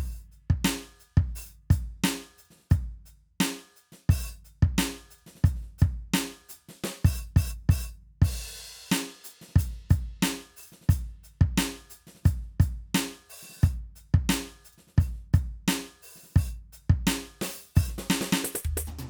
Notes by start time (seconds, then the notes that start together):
0.01 snare
0.06 snare
0.09 snare
0.12 snare
0.31 closed hi-hat
0.50 kick
0.65 closed hi-hat, snare
0.99 closed hi-hat
1.17 kick
1.35 open hi-hat
1.70 closed hi-hat, kick
2.04 closed hi-hat, snare
2.38 closed hi-hat
2.45 closed hi-hat
2.51 snare
2.56 snare
2.59 snare
2.63 snare
2.69 closed hi-hat, kick, snare
3.05 closed hi-hat
3.40 closed hi-hat, snare
3.76 open hi-hat
3.92 snare
4.09 open hi-hat, kick
4.29 snare
4.44 closed hi-hat
4.62 kick
4.78 closed hi-hat, snare
5.10 closed hi-hat
5.18 closed hi-hat
5.26 snare
5.35 snare
5.44 closed hi-hat, kick, snare
5.56 snare, hi-hat pedal
5.62 snare
5.65 snare
5.70 snare
5.78 closed hi-hat, kick
6.14 closed hi-hat, snare
6.49 closed hi-hat
6.69 snare
6.84 snare
7.05 open hi-hat, kick
7.17 hi-hat pedal
7.36 open hi-hat, kick
7.50 hi-hat pedal
7.69 open hi-hat, kick
7.83 hi-hat pedal
8.22 open hi-hat, kick, crash
8.54 open hi-hat
8.92 open hi-hat, snare
9.24 closed hi-hat
9.30 closed hi-hat
9.41 snare
9.49 snare
9.56 closed hi-hat, kick
9.61 snare
9.70 snare
9.76 snare
9.90 closed hi-hat, kick
10.23 closed hi-hat, snare
10.56 open hi-hat
10.63 open hi-hat
10.72 snare
10.81 snare
10.89 closed hi-hat, kick, snare
10.99 snare
11.04 snare
11.08 snare
11.23 closed hi-hat
11.41 kick
11.58 closed hi-hat, snare
11.90 closed hi-hat
12.07 snare
12.15 snare
12.23 closed hi-hat, kick, snare
12.30 snare
12.36 snare
12.41 snare
12.45 snare
12.50 snare
12.60 closed hi-hat, kick
12.95 closed hi-hat, snare
13.29 open hi-hat
13.43 snare
13.50 snare
13.57 snare
13.62 open hi-hat, kick, snare, hi-hat pedal
13.68 snare
13.73 snare
13.95 closed hi-hat
14.14 kick
14.29 closed hi-hat, snare
14.64 closed hi-hat
14.72 closed hi-hat
14.78 snare
14.87 snare
14.97 open hi-hat, kick, snare
15.02 snare, hi-hat pedal
15.10 snare
15.14 snare
15.17 snare
15.33 closed hi-hat, kick
15.68 open hi-hat, snare
16.02 open hi-hat
16.08 open hi-hat
16.16 snare
16.23 snare
16.30 snare
16.36 open hi-hat, kick, snare
16.40 snare
16.72 closed hi-hat
16.90 kick
17.07 closed hi-hat, snare
17.41 open hi-hat, snare
17.75 open hi-hat, kick
17.88 snare
17.98 snare
18.10 snare
18.21 snare, hi-hat pedal
18.33 snare
18.37 hi-hat pedal
18.44 high tom
18.55 high tom
18.65 mid tom
18.77 high tom
18.87 floor tom
18.99 mid tom